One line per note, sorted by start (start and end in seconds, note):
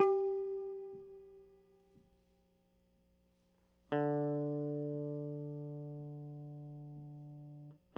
0.00 2.44 G4
0.10 0.38 G4
3.93 7.78 D3